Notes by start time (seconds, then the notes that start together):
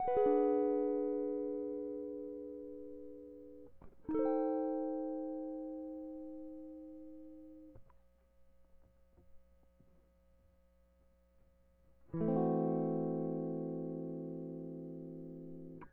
0.00 F#5
0.08 B4
0.19 G#4
0.27 D4
4.10 D#4
4.16 A4
4.20 C5
4.26 G5
12.15 E3
12.21 A3
12.28 C4
12.38 F#4